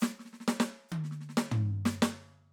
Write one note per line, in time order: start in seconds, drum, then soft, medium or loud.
0.00 cross-stick medium
0.00 snare loud
0.00 hi-hat pedal medium
0.19 snare soft
0.25 snare soft
0.33 snare soft
0.40 snare soft
0.48 snare loud
0.60 snare loud
0.89 hi-hat pedal soft
0.89 high tom loud
1.04 snare soft
1.11 snare soft
1.20 snare soft
1.29 snare soft
1.37 snare loud
1.51 floor tom loud
1.85 snare loud
2.02 snare loud